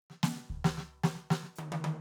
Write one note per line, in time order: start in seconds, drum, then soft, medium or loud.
0.11 snare soft
0.24 snare loud
0.36 snare soft
0.51 kick medium
0.51 snare soft
0.65 snare loud
0.78 snare medium
1.04 snare loud
1.16 snare soft
1.31 snare loud
1.44 snare soft
1.56 hi-hat pedal soft
1.56 high tom loud
1.73 high tom loud
1.85 high tom loud